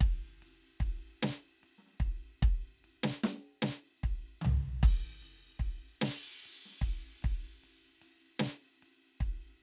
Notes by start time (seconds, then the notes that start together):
0.01 kick, ride
0.42 ride
0.81 kick, ride
1.23 snare, ride
1.61 snare, ride
1.79 snare
1.83 snare
1.87 snare
2.00 kick, ride
2.43 kick, ride
2.85 ride
3.04 snare
3.24 snare
3.62 snare, ride
4.04 kick, ride
4.42 floor tom, high tom
4.83 kick, ride, crash
5.23 ride
5.60 kick, ride
6.02 snare, crash
6.46 ride
6.66 snare
6.71 snare
6.75 snare
6.82 kick, ride
7.23 kick, ride
7.45 snare
7.64 ride
8.02 ride
8.40 snare, ride
8.83 ride
9.21 kick, ride
9.44 snare